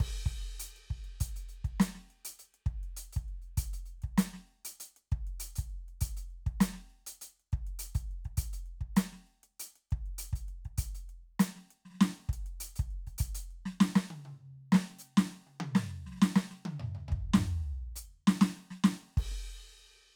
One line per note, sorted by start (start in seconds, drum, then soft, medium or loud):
0.01 kick medium
0.01 crash medium
0.13 closed hi-hat soft
0.26 closed hi-hat soft
0.26 kick medium
0.44 closed hi-hat soft
0.60 closed hi-hat loud
0.77 closed hi-hat soft
0.91 kick soft
0.91 closed hi-hat soft
1.04 closed hi-hat soft
1.21 closed hi-hat loud
1.21 kick medium
1.36 closed hi-hat medium
1.49 closed hi-hat soft
1.65 kick medium
1.65 closed hi-hat soft
1.80 closed hi-hat loud
1.80 kick soft
1.80 snare loud
1.95 snare soft
2.11 closed hi-hat soft
2.25 closed hi-hat loud
2.39 closed hi-hat medium
2.54 closed hi-hat soft
2.66 kick medium
2.66 closed hi-hat soft
2.83 closed hi-hat soft
2.97 closed hi-hat loud
3.13 closed hi-hat medium
3.13 kick medium
3.29 closed hi-hat soft
3.42 closed hi-hat soft
3.58 closed hi-hat loud
3.58 kick medium
3.74 closed hi-hat medium
3.86 closed hi-hat soft
4.02 kick soft
4.02 closed hi-hat soft
4.18 closed hi-hat loud
4.18 snare loud
4.34 snare medium
4.48 closed hi-hat soft
4.65 closed hi-hat loud
4.80 closed hi-hat loud
4.97 closed hi-hat soft
5.12 kick medium
5.12 closed hi-hat soft
5.27 closed hi-hat soft
5.40 closed hi-hat loud
5.56 closed hi-hat medium
5.56 kick medium
5.70 closed hi-hat soft
5.89 closed hi-hat soft
6.01 closed hi-hat loud
6.01 kick medium
6.17 closed hi-hat medium
6.31 closed hi-hat soft
6.47 kick medium
6.47 closed hi-hat soft
6.61 closed hi-hat loud
6.61 snare loud
6.74 snare soft
6.90 closed hi-hat soft
7.07 closed hi-hat loud
7.22 closed hi-hat loud
7.40 closed hi-hat soft
7.53 kick medium
7.53 closed hi-hat soft
7.67 closed hi-hat soft
7.79 closed hi-hat loud
7.95 closed hi-hat medium
7.95 kick medium
8.11 closed hi-hat soft
8.25 kick soft
8.25 closed hi-hat soft
8.38 closed hi-hat loud
8.38 kick medium
8.53 closed hi-hat medium
8.66 closed hi-hat soft
8.81 kick soft
8.97 closed hi-hat loud
8.97 snare loud
9.13 snare soft
9.27 closed hi-hat soft
9.44 closed hi-hat soft
9.60 closed hi-hat loud
9.76 closed hi-hat soft
9.91 kick medium
9.91 closed hi-hat soft
10.06 closed hi-hat soft
10.19 closed hi-hat loud
10.33 closed hi-hat medium
10.33 kick medium
10.49 closed hi-hat soft
10.65 kick soft
10.65 closed hi-hat soft
10.78 closed hi-hat loud
10.78 kick medium
10.95 closed hi-hat medium
11.10 closed hi-hat soft
11.40 closed hi-hat loud
11.40 snare loud
11.56 snare soft
11.71 closed hi-hat soft
11.86 snare soft
11.91 snare soft
11.94 snare soft
12.01 snare loud
12.29 kick medium
12.33 closed hi-hat medium
12.46 closed hi-hat soft
12.61 closed hi-hat loud
12.76 closed hi-hat medium
12.76 kick medium
12.91 closed hi-hat soft
13.07 closed hi-hat soft
13.07 kick soft
13.19 closed hi-hat loud
13.19 kick medium
13.35 closed hi-hat loud
13.51 closed hi-hat soft
13.66 snare medium
13.81 snare loud
13.96 snare loud
14.11 high tom medium
14.26 high tom medium
14.72 snare loud
14.75 snare loud
14.91 snare soft
14.99 hi-hat pedal medium
15.18 snare loud
15.31 snare soft
15.47 high tom soft
15.61 high tom loud
15.75 snare loud
15.89 snare soft
16.07 snare soft
16.12 snare soft
16.16 snare soft
16.22 snare loud
16.36 snare loud
16.51 snare soft
16.66 high tom loud
16.80 mid tom medium
16.95 mid tom medium
17.09 kick medium
17.09 mid tom medium
17.34 snare loud
17.34 mid tom loud
17.96 hi-hat pedal loud
18.28 snare loud
18.41 snare loud
18.57 snare soft
18.71 snare medium
18.84 snare loud
19.18 kick medium
19.18 crash medium
19.32 cross-stick soft